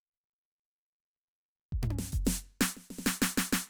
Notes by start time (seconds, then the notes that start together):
1.72 kick
1.83 floor tom
1.90 high tom
1.99 snare
2.12 closed hi-hat, kick
2.25 snare, hi-hat pedal
2.61 snare
2.74 snare, hi-hat pedal
2.90 snare
2.98 snare
3.06 snare
3.21 snare, hi-hat pedal
3.37 snare
3.52 snare